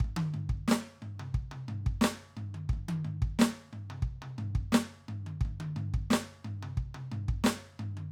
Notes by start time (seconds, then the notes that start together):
0.00 kick, floor tom
0.16 high tom
0.34 floor tom
0.49 kick
0.68 snare
0.71 snare
1.02 floor tom
1.20 mid tom
1.34 kick
1.51 mid tom
1.68 floor tom
1.86 kick
2.01 snare
2.04 snare
2.37 floor tom
2.54 high tom
2.69 kick, floor tom
2.88 high tom
3.05 floor tom
3.22 kick
3.39 snare
3.41 snare
3.73 floor tom
3.90 mid tom
4.02 kick
4.22 mid tom
4.38 floor tom
4.55 kick
4.72 snare
4.74 snare
5.08 floor tom
5.26 high tom
5.41 kick
5.45 floor tom
5.60 high tom
5.76 floor tom
5.94 kick
6.10 snare
6.13 snare
6.45 floor tom
6.63 mid tom
6.77 kick
6.94 mid tom
7.12 floor tom
7.28 kick
7.44 snare
7.46 snare
7.79 floor tom
7.97 high tom